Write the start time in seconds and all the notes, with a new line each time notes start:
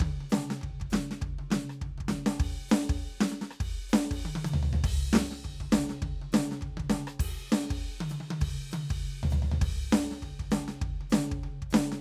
0.01 kick, high tom
0.21 high tom
0.30 snare, hi-hat pedal, high tom
0.51 snare
0.62 kick, high tom
0.81 kick, high tom
0.91 snare, hi-hat pedal, high tom
1.12 snare
1.22 kick, high tom
1.40 high tom
1.51 snare, hi-hat pedal, high tom
1.70 cross-stick
1.82 kick, high tom
1.99 kick, high tom
2.09 snare, hi-hat pedal, high tom
2.27 snare
2.41 kick, crash
2.70 snare, hi-hat pedal
2.90 kick, crash
3.21 snare
3.28 hi-hat pedal
3.33 snare
3.42 snare
3.52 cross-stick
3.61 kick, crash
3.90 hi-hat pedal
3.94 snare
4.12 kick, crash
4.26 high tom
4.36 high tom
4.45 hi-hat pedal, high tom
4.54 floor tom
4.64 floor tom
4.74 floor tom
4.85 kick, crash
5.14 snare, hi-hat pedal
5.16 snare
5.32 snare
5.42 kick, hi-hat pedal, high tom
5.61 kick, high tom
5.73 snare, hi-hat pedal, high tom
5.90 snare
6.03 kick, high tom
6.23 high tom
6.33 snare, hi-hat pedal, high tom
6.52 snare
6.62 kick, high tom
6.78 kick, high tom
6.91 snare, hi-hat pedal, high tom
7.08 cross-stick
7.20 kick, crash
7.50 snare, hi-hat pedal
7.63 snare
7.71 kick, crash
8.01 high tom
8.10 hi-hat pedal, high tom
8.21 high tom
8.31 high tom
8.42 kick, crash
8.72 hi-hat pedal, high tom
8.90 kick, crash
9.24 floor tom
9.31 floor tom, hi-hat pedal
9.43 floor tom
9.53 floor tom
9.62 kick, crash
9.92 snare, hi-hat pedal
10.12 snare
10.23 kick, high tom
10.40 kick, high tom
10.52 snare, hi-hat pedal, high tom
10.69 snare
10.82 kick, high tom
11.02 high tom
11.11 snare, hi-hat pedal, high tom
11.32 kick
11.44 high tom
11.63 kick
11.71 snare, hi-hat pedal, high tom
11.93 snare